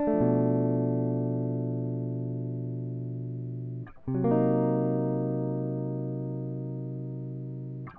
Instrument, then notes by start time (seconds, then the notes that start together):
electric guitar
0.00 D4
0.07 F3 A3
0.22 B2
4.09 C3 F#3
4.15 F#3
4.24 A#3
4.31 D#4